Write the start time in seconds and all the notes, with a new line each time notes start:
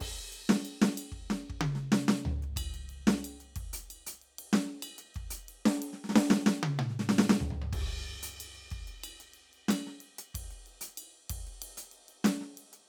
0.01 kick, crash
0.18 closed hi-hat
0.33 ride bell
0.49 snare
0.65 ride bell
0.82 snare
0.98 ride bell
1.12 kick
1.30 snare
1.50 kick
1.61 high tom
1.75 snare
1.92 snare
2.08 snare
2.26 floor tom
2.43 kick, closed hi-hat
2.57 kick, ride bell
2.74 closed hi-hat
2.90 ride
3.07 snare
3.25 ride bell
3.41 closed hi-hat
3.56 kick, ride
3.73 closed hi-hat
3.91 ride bell
4.07 closed hi-hat
4.22 ride
4.39 ride
4.53 snare
4.67 snare
4.83 ride bell
4.99 closed hi-hat
5.15 kick, ride
5.31 closed hi-hat
5.49 ride
5.66 snare
5.82 ride
5.93 snare
6.04 snare
6.10 snare
6.16 snare
6.31 snare
6.47 snare
6.63 high tom
6.79 mid tom
6.90 snare
7.00 snare
7.09 snare
7.19 snare
7.30 snare
7.41 floor tom
7.62 floor tom
7.73 kick, ride
7.90 closed hi-hat
8.07 ride
8.23 closed hi-hat
8.40 ride bell
8.55 closed hi-hat
8.71 kick, ride
8.88 closed hi-hat
9.04 ride bell
9.20 closed hi-hat
9.34 ride
9.53 ride
9.69 snare, ride bell
9.87 snare
10.01 ride
10.19 closed hi-hat
10.35 kick, ride
10.51 closed hi-hat
10.66 ride
10.81 closed hi-hat
10.98 ride bell
11.30 kick, ride
11.47 closed hi-hat
11.62 ride
11.78 closed hi-hat
11.92 ride
12.09 ride
12.25 snare, ride
12.41 snare
12.58 ride
12.73 closed hi-hat